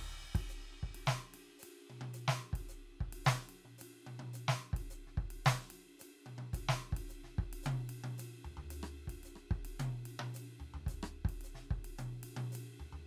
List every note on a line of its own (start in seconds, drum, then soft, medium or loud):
0.24 snare soft
0.35 kick medium
0.35 ride medium
0.49 hi-hat pedal medium
0.69 snare soft
0.83 kick medium
0.95 ride medium
1.06 snare medium
1.06 hi-hat pedal medium
1.34 ride medium
1.46 snare soft
1.59 hi-hat pedal medium
1.63 ride medium
1.90 high tom medium
2.01 high tom medium
2.14 hi-hat pedal medium
2.14 ride medium
2.28 snare medium
2.53 kick medium
2.53 ride medium
2.69 hi-hat pedal medium
2.91 snare soft
3.01 kick medium
3.13 ride medium
3.25 snare loud
3.25 hi-hat pedal medium
3.49 ride medium
3.65 high tom soft
3.78 hi-hat pedal medium
3.78 ride medium
4.07 high tom medium
4.19 high tom medium
4.34 hi-hat pedal medium
4.34 ride medium
4.48 snare medium
4.73 kick medium
4.73 ride medium
4.90 hi-hat pedal medium
5.07 snare soft
5.17 kick medium
5.31 ride medium
5.45 snare loud
5.45 hi-hat pedal medium
5.70 ride medium
5.99 hi-hat pedal medium
5.99 ride medium
6.26 high tom medium
6.38 high tom medium
6.53 kick medium
6.53 hi-hat pedal medium
6.53 ride medium
6.69 snare medium
6.93 kick medium
6.97 ride medium
7.09 hi-hat pedal medium
7.09 ride soft
7.24 snare soft
7.39 kick medium
7.53 ride medium
7.63 hi-hat pedal medium
7.63 high tom loud
7.89 ride medium
8.04 high tom loud
8.18 hi-hat pedal medium
8.18 ride medium
8.45 floor tom medium
8.57 floor tom medium
8.70 hi-hat pedal medium
8.70 ride medium
8.83 cross-stick medium
9.08 kick soft
9.08 ride medium
9.23 hi-hat pedal medium
9.23 ride soft
9.36 cross-stick soft
9.51 kick medium
9.65 ride medium
9.79 hi-hat pedal medium
9.79 high tom loud
10.06 ride medium
10.19 high tom medium
10.34 hi-hat pedal medium
10.34 ride medium
10.60 floor tom medium
10.74 floor tom medium
10.87 kick medium
10.87 hi-hat pedal medium
10.87 ride medium
11.03 cross-stick medium
11.25 kick medium
11.25 ride medium
11.41 hi-hat pedal medium
11.41 ride soft
11.55 snare soft
11.71 kick medium
11.85 ride medium
11.98 hi-hat pedal medium
11.98 high tom medium
12.23 ride medium
12.37 high tom loud
12.52 hi-hat pedal medium
12.52 ride medium
12.80 floor tom medium
12.93 floor tom medium